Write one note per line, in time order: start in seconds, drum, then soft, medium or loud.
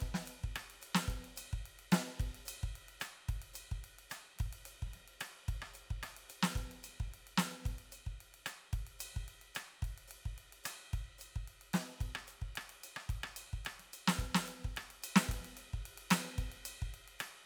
0.01 kick soft
0.01 ride medium
0.14 snare medium
0.26 hi-hat pedal soft
0.26 ride medium
0.44 kick soft
0.56 cross-stick medium
0.56 ride medium
0.70 ride medium
0.82 hi-hat pedal soft
0.82 ride medium
0.95 snare medium
1.08 kick soft
1.08 ride medium
1.22 snare soft
1.22 ride soft
1.26 snare soft
1.29 snare soft
1.31 snare soft
1.35 snare soft
1.35 hi-hat pedal medium
1.35 ride bell medium
1.53 kick soft
1.66 ride medium
1.79 ride soft
1.92 snare loud
1.92 hi-hat pedal medium
1.92 ride medium
2.16 kick soft
2.16 snare soft
2.21 snare soft
2.21 ride medium
2.29 snare soft
2.35 ride medium
2.46 hi-hat pedal medium
2.46 ride bell medium
2.63 kick soft
2.76 ride medium
2.89 ride soft
3.00 cross-stick medium
3.00 hi-hat pedal medium
3.00 ride bell medium
3.29 kick soft
3.29 snare soft
3.29 ride medium
3.42 ride medium
3.54 hi-hat pedal medium
3.54 ride bell medium
3.71 kick soft
3.71 snare soft
3.74 snare soft
3.84 ride medium
3.99 ride soft
4.10 cross-stick medium
4.10 hi-hat pedal soft
4.10 ride bell medium
4.36 kick soft
4.36 snare soft
4.36 ride medium
4.46 kick soft
4.53 ride medium
4.65 hi-hat pedal medium
4.65 ride medium
4.82 kick soft
4.82 snare soft
4.91 snare soft
4.91 ride soft
4.95 snare soft
5.08 ride soft
5.20 cross-stick medium
5.20 hi-hat pedal medium
5.20 ride medium
5.49 kick soft
5.49 ride soft
5.62 cross-stick medium
5.74 hi-hat pedal medium
5.74 ride medium
5.91 kick soft
6.03 cross-stick medium
6.03 ride medium
6.17 ride medium
6.30 hi-hat pedal medium
6.30 ride medium
6.43 snare medium
6.56 kick soft
6.56 ride soft
6.61 kick soft
6.71 snare soft
6.71 ride soft
6.83 hi-hat pedal soft
6.83 ride bell medium
7.00 kick soft
7.00 snare soft
7.06 snare soft
7.10 snare soft
7.10 ride medium
7.27 ride soft
7.38 snare loud
7.38 hi-hat pedal soft
7.38 ride bell medium
7.66 kick soft
7.66 snare soft
7.66 ride medium
7.71 kick soft
7.77 snare soft
7.77 ride soft
7.81 snare soft
7.92 hi-hat pedal soft
7.92 ride bell medium
8.07 kick soft
8.21 ride soft
8.34 ride soft
8.46 cross-stick medium
8.46 hi-hat pedal medium
8.46 ride bell medium
8.73 kick soft
8.73 snare soft
8.73 ride medium
8.79 kick soft
8.87 ride soft
9.00 hi-hat pedal medium
9.00 ride bell medium
9.14 kick soft
9.14 snare soft
9.17 snare soft
9.22 snare soft
9.28 ride medium
9.42 ride soft
9.55 cross-stick medium
9.55 hi-hat pedal medium
9.55 ride bell medium
9.82 kick soft
9.82 snare soft
9.82 ride medium
9.98 ride soft
10.08 hi-hat pedal soft
10.08 ride medium
10.26 kick soft
10.38 ride soft
10.53 ride medium
10.64 cross-stick medium
10.64 hi-hat pedal medium
10.64 ride bell medium
10.94 kick soft
10.94 ride soft
10.99 kick soft
11.19 hi-hat pedal soft
11.19 ride bell medium
11.36 kick soft
11.48 ride soft
11.61 ride soft
11.74 snare medium
11.74 hi-hat pedal medium
11.74 ride medium
12.01 kick soft
12.01 ride medium
12.06 kick soft
12.15 cross-stick medium
12.27 hi-hat pedal medium
12.27 ride medium
12.42 kick soft
12.56 cross-stick medium
12.56 ride medium
12.70 ride medium
12.84 hi-hat pedal soft
12.84 ride bell medium
12.97 cross-stick medium
13.09 kick soft
13.09 ride medium
13.15 kick soft
13.24 cross-stick medium
13.37 hi-hat pedal soft
13.37 ride bell medium
13.53 kick soft
13.65 cross-stick medium
13.65 ride medium
13.79 snare soft
13.79 ride soft
13.93 hi-hat pedal soft
13.93 ride bell medium
14.08 snare loud
14.19 kick soft
14.19 ride medium
14.24 kick soft
14.35 snare medium
14.45 hi-hat pedal medium
14.45 ride medium
14.65 kick soft
14.77 cross-stick medium
14.77 ride medium
14.91 ride medium
15.03 hi-hat pedal soft
15.03 ride bell medium
15.16 snare loud
15.29 kick soft
15.29 ride medium
15.42 snare soft
15.42 ride medium
15.47 snare soft
15.57 hi-hat pedal soft
15.57 ride medium
15.74 kick soft
15.78 kick soft
15.86 ride medium
15.98 ride medium
16.11 snare loud
16.11 hi-hat pedal soft
16.11 ride bell loud
16.38 kick soft
16.38 ride medium
16.52 ride medium
16.65 hi-hat pedal soft
16.65 ride bell medium
16.82 kick soft
16.94 ride medium
17.08 ride soft
17.20 cross-stick medium
17.20 hi-hat pedal medium
17.20 ride medium